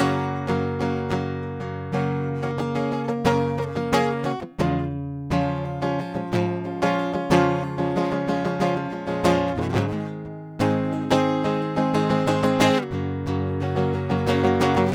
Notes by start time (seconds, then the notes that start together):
0.00 F#2 C#3 F#3 A#3 C#4 F#4
0.49 C#3 F#3 A#3 C#4
0.53 F#2
0.81 C#3 F#3 A#3 C#4 F#4
1.12 F#2 C#3 F#3 A#3 C#4 F#4
1.45 F#3 A#3
1.61 F#2 C#3 F#3 A#3
1.94 F#2 C#3 F#3 A#3 C#4 F#4
2.44 A#3 C#4 F#4
2.59 C#3 A#3 D#4 G#4
2.76 A#3 C#4 G#4
2.94 A#3 C#4 G#4
3.10 A#3 C#4 A#4
3.26 F#2 C#3 A#3 C#4 A#4
3.60 A#3 C#4 A#4
3.77 A#3 C#4 G#4
3.94 C#3 A#3 C#4 G#4
4.26 A#3 C#4 F#4
4.44 G#3 B3
4.61 C#3 G#3 C#4 F4
5.33 C#3 F3 G#3 C#4 F4
5.66 G#3 C#4 F4
5.84 C#3 F3 G#3 C#4 F4
5.98 F3 G#3 C#4 F4
6.15 G#2 A#2 F3 G#3 C#4 F4
6.35 A2 F3 G#3
6.66 G#3 C#4 F4
6.84 A#2 F3 G#3 C#4 F4
7.00 G#3
7.14 C#3 F3 G#3 C#4 F4
7.32 C#3 F3 G#3 C#4 F4
7.63 C#3 G#3 C#4 F4
7.79 C#3 F3 G#3 C#4 F4
7.97 C#3 F3 G#3 C#4 F4
8.12 C#3 F3 G#3 C#4 F4
8.29 C#3 F3 G#3 C#4 F4
8.45 C#3 F3 G#3 C#4 F4
8.62 C#3 F3 G#3 C#4 F4
8.76 F3 G#3 C#4 F4
8.94 F3 G#3 C#4 F4
9.08 A#2 F3 G#3 C#4 F4
9.26 A#2 F3 G#3 C#4 F4
9.58 C3 F3 A3 C#4 F#4
9.64 G#2
9.77 B3
9.83 G#4
9.89 D#3
9.95 G#2 G#3
10.27 G#2
10.61 G#2 D#3 G#3 C4 D#4 G#4
10.94 G#3 C4 D#4 G#4
11.12 G#2 D#3 G#3 C4 D#4 G#4
11.45 D#3 G#3 C4 D#4 G#4
11.63 G#3 C4 D#4
11.78 G#2 D#3 G#3 C4 D#4 G#4
11.95 G#2 D#3 G#3 C4 D#4 G#4
12.12 G#2 D#3 G#3 C4 D#4 G#4
12.28 G#2 D#3 G#3 C4 D#4 G#4
12.43 G#2 D#3 G#3 C4 D#4 G#4
12.62 G#2 D#3 G#3 C4 D#4 G#4
12.80 F#3 A#3 F#4
12.84 C#3
12.93 F#2 C#3 F#3 A#3
13.27 F#2 C#3 F#3 A#3 C#4
13.46 C#4
13.62 F#2 C#3 F#3 A#3 C#4 F#4
13.77 F#2 C#3 F#3 A#3 C#4 F#4
13.92 F#2 C#3 F#3 F#4
13.96 A#3 C#4
14.11 F#2 C#3 F#3 A#3 C#4 F#4
14.28 F#2 C#3 F#3 A#3 C#4 F#4
14.45 F#2 C#3 F#3 A#3 C#4 F#4
14.62 F#2 C#3 F#3 A#3 C#4 F#4
14.77 C#3 F#3 A#3 C#4 F#4
14.81 G2